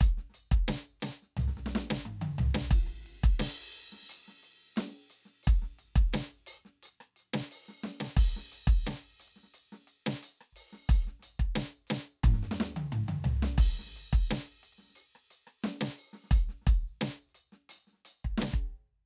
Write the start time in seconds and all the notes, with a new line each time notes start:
0.01 kick, percussion
0.18 snare
0.30 snare
0.35 closed hi-hat
0.52 kick
0.68 closed hi-hat, snare
1.01 closed hi-hat, snare, hi-hat pedal
1.23 snare
1.37 floor tom, hi-hat pedal
1.48 snare
1.58 snare
1.66 snare
1.76 snare
1.91 snare
2.06 mid tom
2.22 high tom
2.39 floor tom
2.55 snare
2.71 kick, ride
2.87 cross-stick
3.07 ride
3.24 kick
3.40 snare, crash
3.72 closed hi-hat
3.93 snare
3.98 cross-stick
4.03 snare, hi-hat pedal
4.10 closed hi-hat
4.28 snare
4.43 closed hi-hat
4.77 closed hi-hat, snare
5.10 closed hi-hat
5.18 percussion
5.26 snare
5.43 percussion
5.48 kick
5.56 hi-hat pedal
5.62 snare
5.79 closed hi-hat
5.96 kick
6.13 snare, percussion
6.47 percussion
6.54 hi-hat pedal
6.65 snare
6.83 hi-hat pedal, percussion
7.01 cross-stick
7.17 hi-hat pedal, percussion
7.34 snare
7.44 hi-hat pedal
7.52 percussion
7.69 snare
7.84 snare
8.01 snare
8.17 kick, crash
8.37 snare, hi-hat pedal
8.52 closed hi-hat
8.68 kick
8.87 closed hi-hat, snare
9.11 hi-hat pedal
9.20 closed hi-hat
9.28 closed hi-hat
9.36 snare
9.44 snare
9.54 closed hi-hat
9.73 snare
9.88 closed hi-hat
10.07 snare
10.23 closed hi-hat
10.41 cross-stick
10.53 kick, percussion
10.73 snare
10.90 kick, percussion
11.02 hi-hat pedal
11.08 snare
11.20 closed hi-hat, snare
11.40 kick
11.56 closed hi-hat, snare
11.87 closed hi-hat, snare, hi-hat pedal
12.24 kick, hi-hat pedal, mid tom
12.34 snare
12.43 snare
12.52 snare, hi-hat pedal
12.61 snare
12.77 high tom
12.93 mid tom
13.09 high tom
13.25 floor tom
13.43 snare
13.58 kick, crash
13.79 snare
13.87 snare
13.96 closed hi-hat
14.13 kick
14.31 closed hi-hat, snare
14.64 closed hi-hat
14.73 closed hi-hat
14.79 snare
14.84 snare
14.90 snare
14.96 hi-hat pedal, percussion
15.16 cross-stick
15.31 closed hi-hat
15.47 cross-stick
15.63 snare, hi-hat pedal
15.81 snare
15.98 percussion
16.14 snare
16.24 snare
16.32 kick, percussion
16.39 hi-hat pedal
16.49 snare
16.62 snare
16.67 closed hi-hat, kick
17.02 closed hi-hat, snare
17.30 hi-hat pedal
17.35 closed hi-hat
17.53 snare
17.70 closed hi-hat
17.87 snare
17.93 snare
17.97 snare
18.06 closed hi-hat
18.25 kick
18.38 snare
18.42 snare
18.54 kick